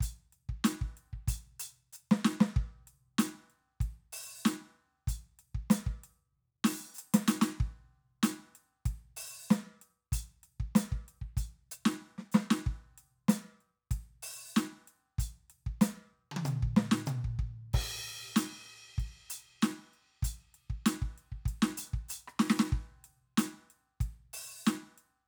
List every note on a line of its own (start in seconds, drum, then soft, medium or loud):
0.01 closed hi-hat loud
0.01 kick medium
0.33 closed hi-hat soft
0.49 kick medium
0.65 closed hi-hat loud
0.65 snare loud
0.82 kick medium
0.98 closed hi-hat soft
1.13 kick soft
1.28 closed hi-hat loud
1.28 kick medium
1.60 closed hi-hat loud
1.93 hi-hat pedal medium
2.12 snare loud
2.25 snare loud
2.41 snare loud
2.57 kick medium
2.88 closed hi-hat soft
3.19 closed hi-hat loud
3.19 snare loud
3.50 closed hi-hat soft
3.81 kick medium
3.81 closed hi-hat soft
4.13 open hi-hat loud
4.45 closed hi-hat loud
4.45 snare loud
4.45 hi-hat pedal medium
5.08 closed hi-hat loud
5.08 kick medium
5.39 closed hi-hat soft
5.55 kick medium
5.71 closed hi-hat loud
5.71 snare loud
5.87 kick medium
6.04 closed hi-hat soft
6.65 open hi-hat loud
6.65 snare loud
6.95 hi-hat pedal medium
6.99 closed hi-hat medium
7.14 snare loud
7.14 closed hi-hat loud
7.28 closed hi-hat loud
7.28 snare loud
7.42 closed hi-hat medium
7.42 snare loud
7.61 kick medium
8.23 closed hi-hat loud
8.23 snare loud
8.56 closed hi-hat soft
8.86 kick medium
8.86 closed hi-hat medium
9.17 open hi-hat loud
9.51 closed hi-hat medium
9.51 snare loud
9.51 hi-hat pedal medium
9.82 closed hi-hat soft
10.13 closed hi-hat loud
10.13 kick medium
10.44 closed hi-hat soft
10.60 kick medium
10.76 closed hi-hat loud
10.76 snare loud
10.93 kick medium
11.09 closed hi-hat soft
11.22 kick soft
11.37 closed hi-hat medium
11.37 kick medium
11.72 open hi-hat loud
11.72 hi-hat pedal medium
11.86 snare loud
12.03 snare soft
12.19 snare soft
12.32 snare loud
12.32 hi-hat pedal medium
12.51 snare loud
12.67 kick medium
12.98 closed hi-hat soft
13.29 closed hi-hat loud
13.29 snare loud
13.61 closed hi-hat soft
13.91 kick medium
13.91 closed hi-hat medium
14.23 open hi-hat loud
14.57 closed hi-hat medium
14.57 snare loud
14.57 hi-hat pedal medium
14.88 closed hi-hat soft
15.19 closed hi-hat loud
15.19 kick medium
15.50 closed hi-hat soft
15.67 kick medium
15.82 open hi-hat loud
15.82 snare loud
15.82 hi-hat pedal medium
16.32 high tom medium
16.37 high tom loud
16.45 hi-hat pedal medium
16.45 mid tom loud
16.63 kick medium
16.77 snare loud
16.92 snare loud
17.07 hi-hat pedal medium
17.07 mid tom loud
17.25 kick medium
17.39 kick medium
17.72 kick soft
17.72 crash loud
17.74 kick loud
18.37 closed hi-hat loud
18.37 snare loud
18.68 closed hi-hat soft
18.98 kick medium
18.98 closed hi-hat soft
19.31 open hi-hat loud
19.63 snare loud
19.63 closed hi-hat medium
19.63 hi-hat pedal medium
19.94 closed hi-hat soft
20.23 closed hi-hat loud
20.23 kick medium
20.55 closed hi-hat soft
20.70 kick medium
20.86 closed hi-hat loud
20.86 snare loud
21.02 kick medium
21.18 closed hi-hat soft
21.32 kick soft
21.46 kick medium
21.46 closed hi-hat medium
21.63 snare loud
21.78 closed hi-hat loud
21.94 kick medium
22.09 closed hi-hat loud
22.09 hi-hat pedal medium
22.28 cross-stick medium
22.40 snare loud
22.50 snare loud
22.60 snare loud
22.73 kick medium
23.05 closed hi-hat soft
23.38 closed hi-hat loud
23.38 snare loud
23.71 closed hi-hat soft
24.01 kick medium
24.01 closed hi-hat medium
24.34 open hi-hat loud
24.66 snare loud
24.66 closed hi-hat medium
24.66 hi-hat pedal medium
24.98 closed hi-hat soft